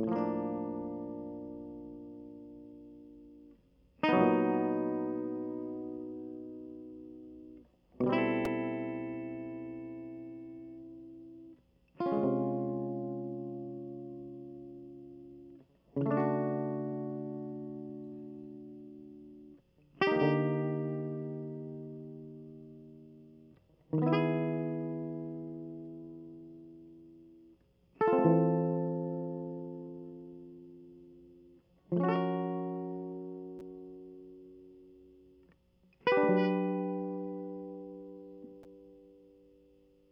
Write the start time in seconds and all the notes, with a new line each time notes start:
0.00 A2
0.08 F3 A#3
0.16 D4
4.03 D#4
4.09 B3
4.13 F#3
4.22 A#2
8.02 B2
8.07 G3 C4
8.12 E4
12.00 F4
12.06 C#4
12.12 G#3
12.24 C3
15.97 C#3
16.06 A3
16.11 D4
16.17 F#4
20.01 G4
20.07 D#4
20.12 A#3
20.22 D3
23.94 D#3
24.02 B3
24.06 E4
24.12 G#4
28.01 A4
28.07 F4
28.13 C4
28.25 E3
31.93 F3
32.00 C#4 F#4
32.08 A4
32.16 A#4
36.07 D4 G4 B4
36.29 F#3